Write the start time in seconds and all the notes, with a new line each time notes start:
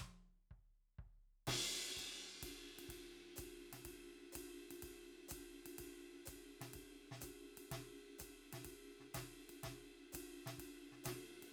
0.01 kick
0.51 kick
0.98 kick
1.47 kick, snare, ride
1.97 kick, ride
2.43 kick, hi-hat pedal, ride
2.77 snare, ride
2.89 kick, ride
3.36 kick, hi-hat pedal, ride
3.72 snare, ride
3.85 kick, ride
4.32 kick, hi-hat pedal, ride
4.71 snare, ride
4.82 kick, ride
5.28 kick, hi-hat pedal, ride
5.66 ride
5.78 kick, ride
6.25 kick, hi-hat pedal, ride
6.61 snare, ride
6.74 kick, ride
7.11 snare
7.21 kick, hi-hat pedal, ride
7.57 ride
7.68 kick, snare, hi-hat pedal, ride
8.19 kick, hi-hat pedal, ride
8.53 snare, ride
8.65 kick, ride
9.00 snare
9.14 kick, snare, hi-hat pedal, ride
9.49 ride
9.63 kick, snare, ride
10.12 kick, hi-hat pedal, ride
10.46 snare, ride
10.58 kick, ride
10.92 snare
11.04 kick, snare, hi-hat pedal, ride
11.43 ride
11.49 hi-hat pedal